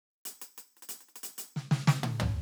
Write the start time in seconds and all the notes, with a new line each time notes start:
0.25 percussion
0.42 percussion
0.58 percussion
0.77 percussion
0.82 percussion
0.89 percussion
1.01 percussion
1.09 percussion
1.16 percussion
1.23 percussion
1.38 percussion
1.56 snare
1.71 snare
1.87 snare
2.03 high tom
2.20 floor tom